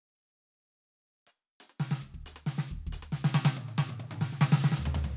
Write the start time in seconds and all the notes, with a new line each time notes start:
1.27 percussion
1.60 percussion
1.70 percussion
1.80 snare
1.91 snare
2.03 kick
2.14 kick
2.26 percussion
2.36 percussion
2.46 snare
2.58 snare
2.71 kick
2.87 kick
2.92 percussion
3.03 percussion
3.12 snare
3.24 snare
3.34 snare
3.45 snare
3.57 high tom
3.68 high tom
3.78 snare
3.89 high tom
4.00 high tom
4.11 high tom
4.21 snare
4.33 snare
4.41 snare
4.52 snare
4.64 snare
4.72 snare
4.77 floor tom
4.85 floor tom
4.94 floor tom
5.04 floor tom